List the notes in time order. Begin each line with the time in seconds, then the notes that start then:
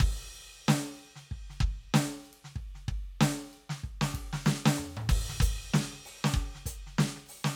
0.01 kick, crash
0.21 snare
0.25 snare
0.30 snare
0.36 ride bell
0.69 snare, hi-hat pedal
0.95 hi-hat pedal
1.00 ride bell
1.06 ride
1.17 snare
1.32 kick
1.51 snare
1.61 kick, ride bell
1.95 snare, hi-hat pedal
2.26 ride bell
2.34 ride
2.45 snare
2.57 kick
2.76 snare
2.89 kick, ride bell
3.22 snare, hi-hat pedal
3.54 ride bell
3.70 snare
3.84 kick, ride
4.02 snare
4.15 kick, ride
4.34 kick, snare
4.46 snare, hi-hat pedal
4.66 snare
4.76 hi-hat pedal, mid tom
4.98 high tom
5.10 kick, crash
5.30 snare
5.41 closed hi-hat, kick
5.74 snare, hi-hat pedal
5.94 snare
6.01 hi-hat pedal
6.06 open hi-hat
6.25 snare
6.35 kick, closed hi-hat
6.56 snare
6.67 closed hi-hat, kick
6.87 snare
6.99 snare, hi-hat pedal
7.16 snare
7.27 open hi-hat, hi-hat pedal
7.45 snare